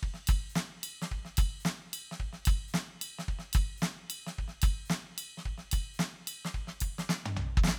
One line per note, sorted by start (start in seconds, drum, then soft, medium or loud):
0.04 kick medium
0.15 snare soft
0.28 kick loud
0.28 ride bell loud
0.50 hi-hat pedal soft
0.56 snare loud
0.84 ride bell loud
1.03 snare loud
1.12 kick medium
1.26 snare soft
1.38 kick loud
1.38 ride bell loud
1.61 hi-hat pedal soft
1.66 snare loud
1.94 ride bell loud
2.12 snare medium
2.20 kick medium
2.34 snare soft
2.46 kick loud
2.46 ride bell loud
2.69 hi-hat pedal soft
2.75 snare loud
3.02 ride bell loud
3.19 snare medium
3.29 kick medium
3.40 snare medium
3.54 kick loud
3.54 ride bell loud
3.78 hi-hat pedal soft
3.83 snare loud
4.11 ride bell loud
4.27 snare medium
4.39 kick medium
4.49 snare soft
4.63 kick loud
4.63 ride bell loud
4.86 hi-hat pedal soft
4.91 snare loud
5.19 ride bell loud
5.38 snare medium
5.46 kick medium
5.59 snare soft
5.72 kick loud
5.72 ride bell loud
5.95 hi-hat pedal soft
6.00 snare loud
6.28 ride bell loud
6.46 snare medium
6.55 kick medium
6.68 snare medium
6.81 kick medium
6.81 ride bell medium
6.99 snare loud
6.99 hi-hat pedal soft
7.10 snare loud
7.26 high tom loud
7.37 floor tom loud
7.58 kick loud
7.64 snare loud
7.68 snare loud